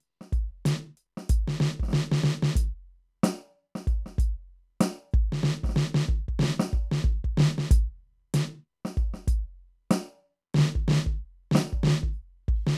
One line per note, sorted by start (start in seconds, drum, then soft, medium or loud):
0.01 closed hi-hat soft
0.22 snare soft
0.33 closed hi-hat soft
0.33 kick medium
0.66 closed hi-hat loud
0.66 snare loud
0.98 closed hi-hat soft
1.18 snare medium
1.30 closed hi-hat loud
1.30 kick medium
1.48 snare medium
1.59 snare loud
1.59 hi-hat pedal soft
1.80 kick medium
1.80 snare soft
1.89 snare soft
1.91 snare soft
1.94 snare loud
2.12 snare loud
2.24 snare loud
2.43 snare loud
2.56 closed hi-hat loud
2.56 kick medium
3.24 closed hi-hat loud
3.24 snare loud
3.76 snare medium
3.88 closed hi-hat soft
3.88 kick medium
4.07 snare soft
4.19 closed hi-hat medium
4.19 kick medium
4.81 closed hi-hat loud
4.81 snare loud
5.12 kick medium
5.12 hi-hat pedal soft
5.33 snare medium
5.44 snare loud
5.64 kick medium
5.64 snare soft
5.70 snare soft
5.76 snare loud
5.76 hi-hat pedal soft
5.95 snare loud
6.09 kick medium
6.29 kick soft
6.40 snare loud
6.40 hi-hat pedal soft
6.44 snare loud
6.60 snare loud
6.74 kick medium
6.92 snare loud
7.05 kick medium
7.25 kick medium
7.33 kick soft
7.38 snare loud
7.41 snare loud
7.59 snare loud
7.71 closed hi-hat loud
7.71 kick loud
8.34 closed hi-hat loud
8.34 snare loud
8.86 snare medium
8.97 kick medium
8.97 closed hi-hat soft
9.14 snare soft
9.28 closed hi-hat medium
9.28 kick medium
9.91 closed hi-hat loud
9.91 snare loud
10.55 snare loud
10.55 hi-hat pedal medium
10.59 snare loud
10.76 kick medium
10.89 snare loud
10.92 snare loud
11.07 kick medium
11.52 snare loud
11.56 snare loud
11.73 kick medium
11.84 snare loud
11.88 snare loud
12.04 kick medium
12.14 hi-hat pedal soft
12.49 kick medium
12.49 snare soft
12.53 crash soft
12.53 ride soft
12.67 snare loud